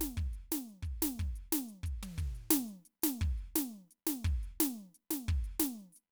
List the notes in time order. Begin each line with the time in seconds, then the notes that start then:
0.01 snare, closed hi-hat
0.18 kick, closed hi-hat
0.34 closed hi-hat
0.52 snare, closed hi-hat
0.69 closed hi-hat
0.83 kick, closed hi-hat
1.03 snare
1.20 kick, closed hi-hat
1.36 closed hi-hat
1.53 snare, closed hi-hat
1.69 closed hi-hat
1.84 kick, closed hi-hat
2.03 closed hi-hat, high tom
2.18 kick, closed hi-hat
2.35 closed hi-hat
2.51 snare, closed hi-hat
2.68 closed hi-hat
2.86 closed hi-hat
3.03 snare, closed hi-hat
3.21 kick, closed hi-hat
3.38 closed hi-hat
3.56 snare, closed hi-hat
3.73 closed hi-hat
3.91 closed hi-hat
4.07 snare, closed hi-hat
4.25 kick, closed hi-hat
4.44 closed hi-hat
4.61 snare, closed hi-hat
4.79 closed hi-hat
4.95 closed hi-hat
5.11 snare, closed hi-hat
5.29 kick, closed hi-hat
5.45 closed hi-hat
5.60 snare, closed hi-hat
5.80 closed hi-hat
5.93 closed hi-hat, hi-hat pedal